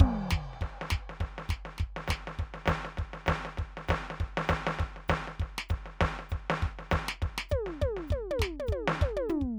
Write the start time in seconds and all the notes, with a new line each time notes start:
0.01 kick, crash
0.31 kick, snare, hi-hat pedal
0.54 snare
0.62 kick, snare
0.82 snare
0.90 kick, snare, hi-hat pedal
1.10 snare
1.21 kick, snare
1.39 snare
1.49 kick, snare, hi-hat pedal
1.66 snare
1.79 kick, snare
1.97 snare
2.08 kick, snare, hi-hat pedal
2.11 snare
2.28 snare
2.40 kick, snare
2.55 snare
2.67 snare, hi-hat pedal
2.68 kick, snare
2.86 snare
2.98 kick, snare
3.14 snare
3.27 kick, snare, hi-hat pedal
3.29 snare
3.46 snare
3.58 kick, snare
3.78 snare
3.89 kick, snare, hi-hat pedal
3.91 snare
4.11 snare
4.21 kick, snare
4.38 snare
4.49 kick, snare, hi-hat pedal
4.67 snare
4.80 kick, snare
4.97 snare
5.09 kick, snare, hi-hat pedal
5.28 snare
5.41 kick, snare
5.59 snare
5.70 kick, snare, hi-hat pedal
5.87 snare
6.02 kick, snare
6.20 snare
6.30 kick, snare, hi-hat pedal
6.51 snare
6.63 kick, snare
6.79 snare
6.92 kick, snare, hi-hat pedal
7.09 snare
7.23 kick, snare
7.39 snare
7.50 kick, hi-hat pedal, high tom
7.67 snare
7.82 kick, high tom
7.97 snare
8.08 kick, hi-hat pedal
8.12 high tom
8.31 high tom
8.40 kick, snare
8.60 high tom
8.67 kick, hi-hat pedal
8.73 high tom
8.88 snare
9.02 kick, high tom
9.17 high tom
9.29 floor tom, hi-hat pedal
9.42 kick